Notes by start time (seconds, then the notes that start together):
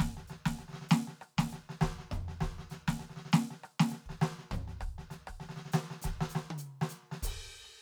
0.01 kick, snare
0.12 kick
0.18 snare
0.29 snare, hi-hat pedal
0.47 kick, snare
0.60 snare
0.70 snare
0.74 snare
0.83 snare
0.90 snare, hi-hat pedal
1.09 snare
1.23 cross-stick
1.39 kick, snare
1.51 snare, hi-hat pedal
1.71 snare
1.82 kick, snare
1.90 kick
1.93 kick
2.00 snare
2.13 kick, floor tom, hi-hat pedal
2.20 kick
2.30 snare
2.42 kick, snare
2.50 kick
2.53 kick
2.60 snare
2.71 snare, hi-hat pedal
2.89 kick, snare
3.01 snare
3.11 snare
3.18 snare
3.26 snare
3.33 snare, hi-hat pedal
3.52 snare
3.65 cross-stick
3.81 snare
3.90 snare, hi-hat pedal
4.07 kick, snare
4.23 snare
4.40 snare
4.52 kick, hi-hat pedal, floor tom
4.58 kick
4.69 snare
4.82 kick, cross-stick
4.90 kick
5.00 snare
5.12 snare, hi-hat pedal
5.29 kick, cross-stick
5.41 snare
5.50 snare
5.58 snare
5.66 snare
5.73 snare, hi-hat pedal
5.92 snare
6.03 kick, snare, hi-hat pedal
6.13 kick
6.17 kick
6.22 snare
6.31 hi-hat pedal
6.36 snare
6.52 open hi-hat, high tom
6.59 hi-hat pedal
6.83 snare
6.91 hi-hat pedal
7.13 snare
7.24 kick, hi-hat pedal, crash
7.28 kick, cross-stick
7.35 kick
7.45 cross-stick
7.66 cross-stick